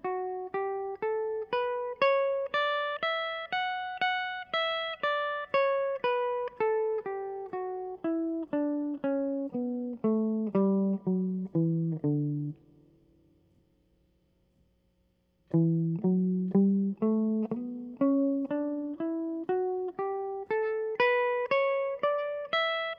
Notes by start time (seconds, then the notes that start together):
0.05 F#4
0.55 G4
1.03 A4
1.53 B4
2.02 C#5
2.54 D5
3.03 E5
3.53 F#5
4.02 F#5
4.54 E5
5.04 D5
5.54 C#5
6.05 B4
6.61 A4
7.06 G4
7.54 F#4
8.05 E4
8.54 D4
9.04 C#4
9.55 B3
10.05 A3
10.56 G3
11.08 F#3
11.56 E3
12.05 D3
15.55 E3
16.00 A3
16.05 F#3
16.55 G3
17.03 A3
17.53 A3
17.58 B3
18.02 C#4
18.51 D4
19.01 E4
19.50 F#4
19.99 G4
20.51 A4
21.00 B4
21.52 C#5
22.04 D5
22.53 E5